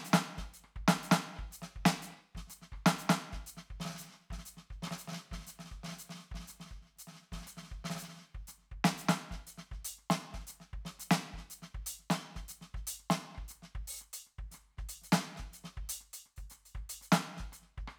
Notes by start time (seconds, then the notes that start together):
0.01 snare, hi-hat pedal
0.13 snare
0.21 snare
0.27 snare
0.37 kick, snare
0.50 snare, hi-hat pedal
0.64 cross-stick
0.74 kick, cross-stick, snare
0.88 snare
0.98 cross-stick, snare
1.03 hi-hat pedal
1.11 snare
1.16 cross-stick
1.25 cross-stick
1.36 kick, cross-stick
1.50 snare, hi-hat pedal
1.62 snare
1.73 kick, snare
1.85 snare
1.98 snare
1.99 snare, hi-hat pedal
2.18 cross-stick
2.35 kick, snare
2.47 cross-stick, snare, hi-hat pedal
2.62 snare
2.72 kick, cross-stick
2.86 snare
2.97 snare, hi-hat pedal
3.09 snare
3.14 cross-stick
3.32 kick, snare
3.43 snare, hi-hat pedal
3.47 snare
3.57 snare
3.65 snare
3.70 kick, snare
3.80 snare
3.85 snare
3.89 snare
3.94 snare
3.98 snare, hi-hat pedal
4.04 snare
4.06 snare
4.08 snare
4.09 snare
4.14 cross-stick
4.20 snare
4.30 kick, snare
4.38 snare
4.45 snare, hi-hat pedal
4.57 snare
4.70 kick, snare
4.82 snare
4.87 cross-stick, snare
4.96 cross-stick, hi-hat pedal
5.08 snare
5.12 snare
5.15 snare
5.31 kick, snare
5.37 snare
5.41 snare
5.47 snare, hi-hat pedal
5.59 snare
5.64 snare
5.70 kick, snare
5.83 snare
5.88 snare
5.91 snare
5.97 snare, hi-hat pedal
6.09 snare
6.14 snare
6.18 snare
6.31 kick, snare
6.39 snare
6.42 snare
6.47 cross-stick, hi-hat pedal
6.60 snare
6.65 snare
6.69 kick, snare
6.74 snare
6.81 snare
6.84 snare
6.96 snare, hi-hat pedal, crash
7.07 snare
7.11 snare
7.14 snare
7.21 snare
7.32 kick, snare
7.36 snare
7.40 snare
7.44 cross-stick, snare, hi-hat pedal
7.57 snare
7.62 snare
7.67 snare
7.71 kick, snare
7.84 snare
7.90 snare
7.95 snare, hi-hat pedal
8.02 snare
8.08 snare
8.16 snare
8.20 snare
8.28 snare
8.31 kick, snare
8.36 snare
8.47 cross-stick, snare, hi-hat pedal
8.61 snare
8.71 kick, cross-stick
8.84 snare
8.94 snare, hi-hat pedal
9.09 snare
9.13 cross-stick
9.31 kick, snare
9.45 snare
9.47 snare, hi-hat pedal
9.58 snare
9.71 kick, snare
9.85 closed hi-hat
9.98 cross-stick
10.10 snare
10.16 cross-stick
10.24 snare
10.33 kick, snare
10.39 snare
10.47 cross-stick, hi-hat pedal
10.60 snare
10.73 kick, cross-stick
10.85 snare
10.98 cross-stick, snare, hi-hat pedal
11.11 snare
11.25 snare
11.33 kick, snare
11.49 snare, hi-hat pedal
11.62 snare
11.73 kick, cross-stick, snare
11.86 open hi-hat
11.99 snare
12.10 snare
12.19 snare
12.24 cross-stick
12.35 kick, snare
12.48 snare, hi-hat pedal
12.61 snare
12.74 kick, snare
12.87 closed hi-hat
13.00 cross-stick
13.10 snare
13.17 cross-stick
13.24 cross-stick
13.35 kick, cross-stick
13.48 cross-stick, hi-hat pedal
13.62 snare
13.75 kick, cross-stick
13.87 open hi-hat
13.98 cross-stick, hi-hat pedal
14.13 closed hi-hat
14.26 cross-stick
14.38 kick
14.51 cross-stick, snare, closed hi-hat, hi-hat pedal, crash
14.77 kick, snare
14.89 closed hi-hat
15.01 snare, hi-hat pedal
15.12 snare
15.17 snare
15.26 snare
15.36 kick, snare
15.51 snare, hi-hat pedal
15.64 snare
15.76 kick, snare
15.89 closed hi-hat
16.01 cross-stick
16.13 closed hi-hat
16.26 cross-stick
16.36 open hi-hat, kick
16.50 cross-stick, closed hi-hat, hi-hat pedal
16.65 closed hi-hat
16.75 kick, cross-stick
16.89 closed hi-hat
17.01 cross-stick, hi-hat pedal
17.12 snare
17.27 snare
17.37 kick, snare
17.52 cross-stick, snare, hi-hat pedal
17.62 snare
17.77 kick, snare
17.88 cross-stick